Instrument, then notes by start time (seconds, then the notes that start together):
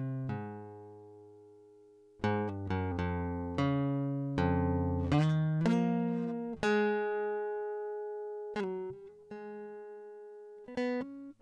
acoustic guitar
0.00 C3
0.31 G#2
2.26 G#2
2.50 G2
2.73 F#2
3.01 F2
3.60 C#3
4.40 F2
5.13 D#3
5.63 F3
5.67 A#3
6.59 D#3
6.65 G#3
7.11 G#3
8.58 F#3
8.92 G4
9.10 G#4
9.33 G#3
10.79 B3
10.89 B3
11.03 C#4